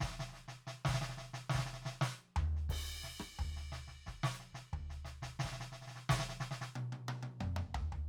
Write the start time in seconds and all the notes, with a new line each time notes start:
0.01 kick, snare
0.06 snare
0.11 kick, snare
0.20 snare
0.29 snare
0.34 snare
0.48 snare
0.67 snare
0.85 kick, snare
0.90 snare
0.94 snare
1.02 snare
1.10 snare
1.18 snare
1.22 snare
1.34 snare
1.50 snare
1.55 kick, snare
1.59 snare
1.66 snare
1.74 snare
1.82 snare
1.86 snare
1.92 snare
2.02 snare
2.37 floor tom
2.57 snare
2.70 kick, snare, crash
3.04 snare
3.20 kick, cross-stick
3.39 kick, floor tom
3.57 snare
3.72 snare, hi-hat pedal
3.88 kick, snare
4.07 kick, snare
4.24 snare
4.34 hi-hat pedal
4.40 snare
4.53 kick, snare
4.73 kick, floor tom
4.90 snare
5.05 snare, hi-hat pedal
5.22 kick, snare
5.40 snare
5.45 kick, snare
5.53 snare
5.61 snare
5.72 snare
5.82 snare
5.88 snare
5.91 snare
5.96 snare
6.10 kick, snare
6.20 kick, snare
6.29 snare
6.41 snare
6.51 snare
6.62 snare
6.76 high tom
6.93 high tom
7.09 high tom
7.23 high tom
7.41 kick, mid tom
7.57 mid tom
7.75 kick, floor tom
7.93 floor tom